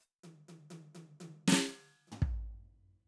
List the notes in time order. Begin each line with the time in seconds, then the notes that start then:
0.00 hi-hat pedal
0.23 high tom
0.48 high tom
0.70 high tom
0.95 high tom
1.20 closed hi-hat, high tom
1.48 snare
1.52 snare
2.07 high tom
2.12 floor tom
2.22 kick